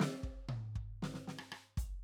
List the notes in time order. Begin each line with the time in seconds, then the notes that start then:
0.00 snare
0.23 kick
0.49 high tom
0.75 kick
1.02 snare
1.14 snare
1.28 snare
1.39 cross-stick
1.52 cross-stick
1.77 open hi-hat, kick